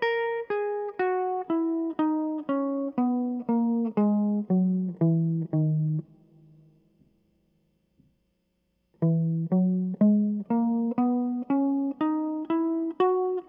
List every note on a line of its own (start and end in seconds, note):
0.02 0.46 A#4
0.50 0.92 G#4
0.99 1.45 F#4
1.50 1.94 E4
1.99 2.43 D#4
2.49 2.91 C#4
2.98 3.43 B3
3.49 3.91 A#3
3.98 4.44 G#3
4.51 4.93 F#3
5.02 5.47 E3
5.54 6.02 D#3
9.03 9.49 E3
9.52 9.97 F#3
10.02 10.44 G#3
10.51 10.95 A#3
10.98 11.46 B3
11.50 11.95 C#4
12.01 12.48 D#4
12.50 12.94 E4
13.00 13.42 F#4